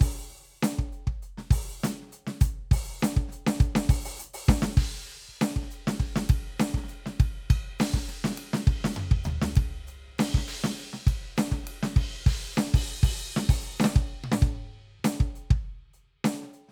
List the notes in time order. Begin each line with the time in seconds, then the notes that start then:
0.01 open hi-hat, kick
0.51 kick
0.62 closed hi-hat, snare, hi-hat pedal
0.79 kick
0.93 closed hi-hat
1.07 kick, crash, ride
1.23 closed hi-hat
1.38 snare
1.51 open hi-hat, kick
1.83 closed hi-hat, snare, hi-hat pedal
2.02 snare
2.08 snare
2.10 closed hi-hat, snare
2.27 snare
2.41 open hi-hat, kick
2.71 open hi-hat, kick
3.01 closed hi-hat, snare, hi-hat pedal
3.17 kick
3.28 snare
3.32 closed hi-hat
3.47 snare
3.60 open hi-hat, kick
3.75 snare
3.89 open hi-hat, kick
4.05 open hi-hat
4.19 closed hi-hat, hi-hat pedal
4.34 open hi-hat
4.49 kick, snare
4.62 snare
4.77 kick, crash
5.29 kick
5.41 snare, hi-hat pedal, ride
5.56 kick
5.62 snare
5.71 hi-hat pedal, ride bell
5.87 snare
6.00 kick, crash
6.16 snare
6.29 kick, ride
6.59 snare, hi-hat pedal, ride
6.74 kick, snare
6.84 snare
6.88 snare, hi-hat pedal, ride
7.06 snare
7.18 kick, hi-hat pedal, ride
7.50 kick, hi-hat pedal, ride bell
7.79 snare, hi-hat pedal, crash
7.94 kick, snare
8.08 snare, hi-hat pedal, ride
8.24 snare
8.31 snare
8.35 hi-hat pedal, ride
8.54 snare
8.67 kick, ride
8.84 snare
8.93 hi-hat pedal, mid tom
9.11 kick
9.24 floor tom, hi-hat pedal
9.42 snare
9.56 kick, ride
9.87 hi-hat pedal, ride
10.08 kick
10.16 kick, snare, hi-hat pedal, ride
10.34 kick, snare
10.48 hi-hat pedal, crash
10.64 snare
10.79 ride
10.93 snare
11.07 kick, hi-hat pedal, ride bell
11.37 snare, hi-hat pedal, ride bell
11.52 kick, snare
11.57 snare
11.63 snare
11.67 ride
11.83 snare
11.93 kick, hi-hat pedal
11.97 ride
12.26 kick, hi-hat pedal, crash
12.55 snare, hi-hat pedal
12.74 kick, crash
12.86 hi-hat pedal
13.03 kick, crash
13.18 hi-hat pedal
13.37 snare
13.49 open hi-hat, kick
13.80 snare, hi-hat pedal
13.84 snare
13.96 kick
14.07 hi-hat pedal
14.24 high tom
14.32 snare
14.42 kick
15.00 kick
15.04 closed hi-hat, snare
15.20 kick
15.36 closed hi-hat
15.51 kick
15.94 closed hi-hat
16.25 closed hi-hat, snare
16.42 snare
16.48 snare
16.53 closed hi-hat
16.68 snare